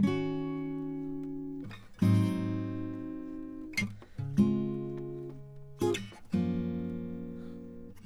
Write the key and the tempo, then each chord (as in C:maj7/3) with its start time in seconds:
A# minor, 110 BPM
0.00 D#:min7(4,*5)/4
2.18 G#:7(11)
4.36 C#:maj7(11)/4
6.54 F#:maj7